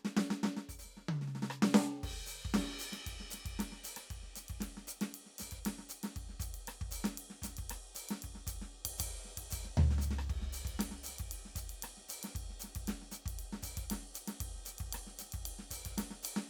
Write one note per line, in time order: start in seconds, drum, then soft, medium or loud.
0.05 snare medium
0.17 snare medium
0.31 snare medium
0.44 snare medium
0.57 snare soft
0.69 open hi-hat medium
0.69 kick soft
0.79 hi-hat pedal medium
0.85 snare soft
0.97 snare soft
1.09 high tom loud
1.22 snare soft
1.28 snare soft
1.35 snare soft
1.43 snare medium
1.50 cross-stick medium
1.63 snare loud
1.75 snare loud
2.03 kick soft
2.03 crash medium
2.27 hi-hat pedal medium
2.45 kick soft
2.52 snare medium
2.52 hi-hat pedal soft
2.52 ride loud
2.69 snare soft
2.79 hi-hat pedal loud
2.79 ride medium
2.93 snare soft
2.93 ride medium
3.07 kick soft
3.07 ride medium
3.20 snare soft
3.31 snare soft
3.31 hi-hat pedal loud
3.31 ride medium
3.46 kick soft
3.46 ride medium
3.59 snare medium
3.59 ride medium
3.72 snare soft
3.84 hi-hat pedal loud
3.84 ride medium
3.97 cross-stick medium
3.97 ride medium
4.11 kick soft
4.11 ride soft
4.23 snare soft
4.36 snare soft
4.36 hi-hat pedal loud
4.36 ride medium
4.49 kick soft
4.49 ride medium
4.61 snare soft
4.61 ride medium
4.77 snare soft
4.88 hi-hat pedal loud
4.88 ride medium
5.01 snare medium
5.01 ride medium
5.14 ride medium
5.26 snare soft
5.39 kick soft
5.39 snare soft
5.39 hi-hat pedal loud
5.39 ride medium
5.52 kick soft
5.52 ride medium
5.63 snare medium
5.63 hi-hat pedal soft
5.63 ride medium
5.79 snare soft
5.89 hi-hat pedal loud
5.89 ride medium
6.03 snare soft
6.03 ride medium
6.16 kick soft
6.16 ride soft
6.29 snare soft
6.40 kick soft
6.40 hi-hat pedal medium
6.40 ride medium
6.55 ride medium
6.68 cross-stick medium
6.68 ride medium
6.81 kick soft
6.91 hi-hat pedal loud
6.91 ride medium
7.05 snare medium
7.05 ride medium
7.18 ride medium
7.30 snare soft
7.42 kick soft
7.42 snare soft
7.42 hi-hat pedal loud
7.42 ride medium
7.57 kick soft
7.57 ride medium
7.70 cross-stick medium
7.70 ride medium
7.95 hi-hat pedal medium
7.95 ride medium
8.09 snare medium
8.09 ride medium
8.23 kick soft
8.23 ride medium
8.35 snare soft
8.47 kick soft
8.47 hi-hat pedal loud
8.47 ride medium
8.62 snare soft
8.77 snare soft
8.85 kick soft
8.85 ride loud
8.98 kick soft
8.98 hi-hat pedal medium
8.98 ride loud
9.25 snare soft
9.37 kick soft
9.37 ride medium
9.51 kick soft
9.51 hi-hat pedal loud
9.51 ride medium
9.65 snare soft
9.76 floor tom loud
9.76 hi-hat pedal soft
9.91 snare soft
9.98 snare soft
9.98 hi-hat pedal loud
10.05 snare soft
10.11 snare soft
10.19 cross-stick medium
10.26 kick medium
10.26 hi-hat pedal soft
10.30 ride medium
10.42 snare soft
10.53 hi-hat pedal medium
10.53 ride medium
10.65 kick soft
10.65 ride medium
10.78 snare medium
10.78 hi-hat pedal soft
10.78 ride medium
10.91 snare soft
11.04 hi-hat pedal loud
11.04 ride medium
11.09 snare soft
11.19 kick soft
11.19 ride medium
11.29 hi-hat pedal soft
11.29 ride medium
11.45 snare soft
11.56 kick soft
11.56 hi-hat pedal medium
11.56 ride medium
11.70 ride medium
11.83 cross-stick medium
11.83 ride medium
11.97 snare soft
12.09 hi-hat pedal loud
12.09 ride medium
12.23 snare soft
12.23 ride medium
12.35 kick soft
12.35 ride medium
12.50 snare soft
12.60 snare soft
12.60 hi-hat pedal loud
12.60 ride medium
12.75 kick soft
12.75 ride medium
12.88 snare medium
12.88 ride medium
13.02 snare soft
13.12 snare soft
13.12 hi-hat pedal loud
13.26 kick medium
13.26 ride medium
13.39 ride medium
13.53 snare soft
13.63 kick soft
13.63 hi-hat pedal medium
13.63 ride medium
13.77 kick soft
13.77 ride medium
13.90 snare medium
13.90 ride loud
14.02 snare soft
14.15 hi-hat pedal medium
14.15 ride medium
14.28 snare soft
14.28 ride medium
14.41 kick soft
14.41 ride medium
14.56 snare soft
14.66 snare soft
14.66 hi-hat pedal medium
14.66 ride medium
14.79 kick soft
14.79 ride medium
14.93 cross-stick medium
14.93 ride loud
15.07 snare soft
15.19 snare soft
15.19 hi-hat pedal medium
15.19 ride medium
15.33 kick soft
15.33 ride medium
15.46 ride medium
15.59 snare soft
15.71 kick soft
15.71 hi-hat pedal loud
15.71 ride medium
15.85 kick soft
15.85 ride medium
15.98 snare medium
15.98 ride medium
16.11 snare soft
16.23 hi-hat pedal loud
16.23 ride loud
16.37 snare medium